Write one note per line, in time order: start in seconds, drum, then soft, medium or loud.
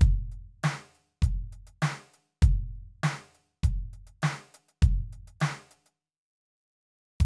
0.01 kick loud
0.01 closed hi-hat loud
0.01 hi-hat pedal medium
0.32 closed hi-hat soft
0.64 snare loud
0.64 closed hi-hat loud
0.95 closed hi-hat soft
1.23 kick loud
1.23 closed hi-hat loud
1.53 closed hi-hat medium
1.67 closed hi-hat medium
1.82 snare loud
1.82 closed hi-hat loud
2.14 closed hi-hat medium
2.43 kick loud
2.43 closed hi-hat loud
2.75 closed hi-hat soft
3.04 snare loud
3.04 closed hi-hat loud
3.35 closed hi-hat soft
3.64 kick loud
3.64 closed hi-hat loud
3.94 closed hi-hat soft
4.07 closed hi-hat medium
4.23 snare loud
4.23 closed hi-hat medium
4.55 closed hi-hat medium
4.69 closed hi-hat soft
4.83 kick loud
4.83 closed hi-hat loud
5.13 closed hi-hat medium
5.28 closed hi-hat medium
5.41 snare loud
5.41 closed hi-hat loud
5.71 closed hi-hat medium
5.86 closed hi-hat soft
7.21 closed hi-hat loud
7.21 kick loud